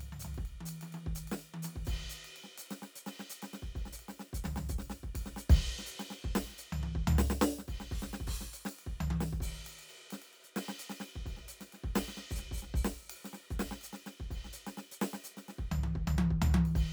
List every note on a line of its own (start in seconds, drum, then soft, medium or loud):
0.01 ride medium
0.12 floor tom soft
0.19 hi-hat pedal medium
0.19 ride medium
0.24 floor tom medium
0.34 kick medium
0.34 ride soft
0.40 hi-hat pedal soft
0.45 ride soft
0.60 high tom medium
0.65 hi-hat pedal medium
0.65 ride medium
0.81 high tom medium
0.81 ride medium
0.92 high tom medium
0.92 ride soft
1.06 kick medium
1.15 hi-hat pedal medium
1.15 ride medium
1.27 ride medium
1.31 snare medium
1.36 hi-hat pedal soft
1.36 ride soft
1.54 high tom medium
1.62 hi-hat pedal medium
1.62 high tom medium
1.62 ride medium
1.76 kick medium
1.85 kick medium
1.85 hi-hat pedal soft
1.85 ride medium
2.09 hi-hat pedal medium
2.09 ride soft
2.24 ride medium
2.36 ride medium
2.44 snare soft
2.58 hi-hat pedal medium
2.58 ride medium
2.71 snare medium
2.71 ride medium
2.82 snare soft
2.82 ride soft
2.95 hi-hat pedal medium
3.06 snare medium
3.06 ride medium
3.19 snare soft
3.30 hi-hat pedal medium
3.30 ride medium
3.42 snare soft
3.42 ride medium
3.53 snare soft
3.53 ride soft
3.62 kick medium
3.75 kick medium
3.75 ride soft
3.85 snare soft
3.92 hi-hat pedal medium
3.99 ride soft
4.08 snare soft
4.08 ride soft
4.19 snare soft
4.19 ride soft
4.33 kick medium
4.33 hi-hat pedal medium
4.44 snare medium
4.44 floor tom medium
4.56 snare medium
4.56 floor tom medium
4.69 kick medium
4.69 hi-hat pedal medium
4.78 snare soft
4.78 ride medium
4.90 snare medium
4.90 ride soft
5.03 kick medium
5.15 kick medium
5.15 ride medium
5.26 snare soft
5.36 snare soft
5.36 hi-hat pedal medium
5.49 kick loud
5.49 ride loud
5.78 snare soft
5.86 hi-hat pedal medium
5.86 ride medium
5.99 snare medium
5.99 ride medium
6.10 snare soft
6.10 ride soft
6.24 kick medium
6.35 snare loud
6.35 ride medium
6.46 snare soft
6.49 snare soft
6.51 snare soft
6.58 hi-hat pedal medium
6.58 ride soft
6.72 floor tom medium
6.83 high tom medium
6.95 kick medium
7.07 floor tom loud
7.18 snare loud
7.30 snare medium
7.41 snare loud
7.58 snare soft
7.68 kick medium
7.68 ride medium
7.80 snare soft
7.91 kick medium
7.91 crash soft
8.02 snare medium
8.13 snare medium
8.20 kick medium
8.27 kick medium
8.27 crash medium
8.41 snare soft
8.53 hi-hat pedal medium
8.53 ride medium
8.65 snare medium
8.65 ride medium
8.79 ride soft
8.86 kick medium
9.00 floor tom medium
9.10 high tom medium
9.20 snare medium
9.33 kick medium
9.40 open hi-hat medium
9.40 kick medium
9.40 ride medium
9.66 ride medium
9.79 ride soft
9.89 ride soft
10.10 snare medium
10.10 ride medium
10.22 ride soft
10.33 ride soft
10.44 hi-hat pedal soft
10.56 snare medium
10.56 ride medium
10.68 snare medium
10.79 hi-hat pedal medium
10.79 ride medium
10.89 snare medium
10.89 ride medium
11.00 snare medium
11.04 ride soft
11.15 kick medium
11.26 kick medium
11.26 ride soft
11.36 snare soft
11.48 hi-hat pedal medium
11.48 ride soft
11.60 snare soft
11.60 ride medium
11.72 snare soft
11.72 ride soft
11.84 kick medium
11.95 snare loud
11.95 ride medium
12.08 snare soft
12.17 snare soft
12.30 open hi-hat medium
12.30 kick medium
12.36 snare soft
12.36 hi-hat pedal medium
12.51 open hi-hat medium
12.51 kick medium
12.57 hi-hat pedal medium
12.62 snare soft
12.74 open hi-hat medium
12.74 kick medium
12.84 snare medium
13.10 ride medium
13.24 snare soft
13.24 ride medium
13.33 snare soft
13.33 ride soft
13.50 kick medium
13.50 hi-hat pedal soft
13.59 snare medium
13.59 ride medium
13.71 snare medium
13.81 hi-hat pedal medium
13.81 ride soft
13.93 snare soft
13.93 ride soft
14.06 snare soft
14.06 ride soft
14.20 kick medium
14.30 kick medium
14.30 ride medium
14.44 snare soft
14.53 hi-hat pedal medium
14.53 ride soft
14.67 snare medium
14.67 ride soft
14.77 snare soft
14.77 ride soft
14.91 hi-hat pedal medium
15.01 snare loud
15.01 ride soft
15.13 snare medium
15.24 hi-hat pedal medium
15.24 ride soft
15.37 snare soft
15.37 ride soft
15.48 snare soft
15.48 ride soft
15.58 kick medium
15.71 floor tom loud
15.83 high tom medium
15.95 kick medium
16.07 floor tom loud
16.18 high tom loud
16.30 kick medium
16.42 floor tom loud
16.54 high tom loud
16.65 ride soft
16.75 kick medium
16.75 ride medium